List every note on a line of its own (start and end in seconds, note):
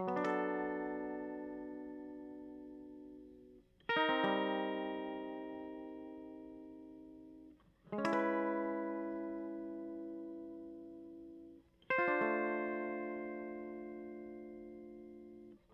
0.00 3.63 F#3
0.09 3.63 B3
0.17 3.63 D4
0.25 2.02 A4
3.82 3.88 D4
3.90 6.72 A#4
3.98 7.62 D#4
4.10 7.56 C4
4.25 7.56 G3
7.94 11.60 G#3
7.99 11.64 C#4
8.06 11.61 E4
8.14 11.11 B4
11.91 15.29 C5
11.99 15.58 F4
12.09 15.59 D4
12.22 15.59 A3